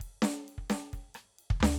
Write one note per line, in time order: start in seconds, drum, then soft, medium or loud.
0.00 kick soft
0.00 ride medium
0.22 snare loud
0.22 ride soft
0.48 ride soft
0.58 kick soft
0.70 snare medium
0.70 ride medium
0.93 kick soft
0.93 ride soft
1.14 cross-stick medium
1.14 ride soft
1.24 snare soft
1.39 ride soft
1.50 kick medium
1.60 snare loud
1.60 floor tom loud